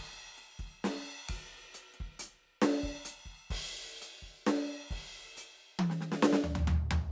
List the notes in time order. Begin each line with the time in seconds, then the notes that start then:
0.14 closed hi-hat
0.39 closed hi-hat
0.60 kick, closed hi-hat
0.85 snare, crash
1.06 closed hi-hat
1.29 kick, ride
1.75 closed hi-hat
1.95 closed hi-hat
2.01 kick
2.20 closed hi-hat
2.62 snare, crash
2.84 kick
3.06 closed hi-hat
3.26 kick
3.51 kick, ride
4.02 closed hi-hat
4.23 kick
4.47 snare, crash
4.91 kick, ride
5.38 open hi-hat, hi-hat pedal
5.80 high tom
5.91 snare
6.01 snare
6.12 snare
6.23 snare
6.33 snare
6.45 floor tom
6.56 floor tom
6.68 floor tom
6.92 floor tom